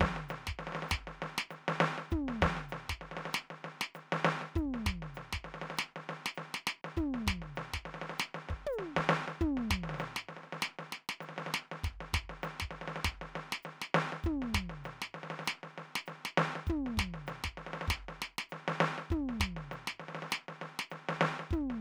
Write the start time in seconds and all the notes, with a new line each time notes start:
0.01 kick, snare
0.07 kick
0.17 snare
0.29 snare, hi-hat pedal
0.48 kick, snare
0.59 snare
0.68 snare
0.73 snare
0.76 snare
0.83 snare
0.89 kick, snare, hi-hat pedal
1.08 snare
1.23 snare
1.39 snare
1.51 snare, hi-hat pedal
1.69 snare
1.81 snare
1.98 snare
2.11 kick, floor tom, hi-hat pedal
2.18 kick
2.21 kick
2.29 snare
2.43 kick, snare
2.57 snare
2.69 snare, hi-hat pedal
2.90 kick, snare
3.02 snare
3.12 snare
3.17 snare
3.26 snare
3.34 snare, hi-hat pedal
3.51 snare
3.65 snare
3.82 snare
3.95 snare, hi-hat pedal
4.13 snare
4.25 snare
4.42 snare
4.56 kick, floor tom, hi-hat pedal
4.65 kick
4.75 snare
4.87 kick, snare
4.93 kick
5.03 snare
5.15 snare, hi-hat pedal
5.33 kick, snare
5.45 snare
5.55 snare
5.62 snare
5.71 snare
5.78 snare, hi-hat pedal
5.97 snare
6.10 snare
6.27 snare
6.35 snare, hi-hat pedal
6.55 snare
6.68 snare
6.85 snare
6.97 kick, floor tom, hi-hat pedal
7.15 snare
7.28 kick, snare
7.37 kick
7.43 snare
7.56 snare, hi-hat pedal
7.74 kick, snare
7.86 snare
7.95 snare
8.02 snare
8.10 snare
8.19 snare, hi-hat pedal
8.35 snare
8.49 kick, snare
8.67 open hi-hat, high tom
8.73 hi-hat pedal
8.79 snare
8.96 kick, snare
9.10 snare
9.28 snare
9.41 kick, floor tom, hi-hat pedal
9.47 kick
9.58 snare
9.71 kick, snare
9.84 snare
9.90 snare
9.95 snare
10.00 snare, hi-hat pedal
10.17 snare
10.29 snare
10.37 snare
10.44 snare
10.53 snare
10.61 snare, hi-hat pedal
10.79 snare
10.93 snare
11.10 snare
11.21 snare, hi-hat pedal
11.29 snare
11.37 snare
11.39 snare
11.55 snare
11.72 snare
11.84 kick, snare, hi-hat pedal
11.90 kick
11.94 kick
12.01 snare
12.14 kick, snare
12.24 kick
12.30 snare
12.43 snare, hi-hat pedal
12.60 kick, snare
12.71 snare
12.82 snare
12.88 snare
12.96 snare
13.05 kick, snare, hi-hat pedal
13.11 kick
13.22 snare
13.36 snare
13.53 snare
13.63 snare, hi-hat pedal
13.82 snare
13.95 snare
14.13 snare
14.24 kick, floor tom, hi-hat pedal
14.31 kick
14.34 kick
14.43 snare
14.55 kick, snare
14.62 kick
14.70 snare
14.85 snare, hi-hat pedal
15.02 snare
15.15 snare
15.24 snare
15.31 snare
15.40 snare
15.45 snare, hi-hat pedal
15.64 snare
15.78 snare
15.96 snare
16.06 snare, hi-hat pedal
16.26 snare
16.38 snare
16.56 snare
16.67 kick, floor tom, hi-hat pedal
16.77 kick
16.87 snare
16.98 kick, snare
17.05 kick
17.15 snare
17.27 snare, hi-hat pedal
17.44 kick, snare
17.58 snare
17.67 snare
17.74 snare
17.82 snare
17.88 kick, snare, hi-hat pedal
17.94 kick
18.09 snare
18.22 snare
18.39 snare
18.50 snare, hi-hat pedal
18.68 snare
18.81 snare
18.99 snare
19.11 kick, floor tom, hi-hat pedal
19.17 kick
19.20 kick
19.30 snare
19.41 kick, snare
19.57 snare
19.72 snare, hi-hat pedal
19.88 snare
20.00 snare
20.09 snare
20.15 snare
20.23 snare
20.31 snare, hi-hat pedal
20.49 snare
20.62 snare
20.80 snare
20.91 snare, hi-hat pedal
21.09 snare
21.22 snare
21.40 snare
21.51 kick, floor tom, hi-hat pedal
21.58 kick
21.61 kick
21.71 snare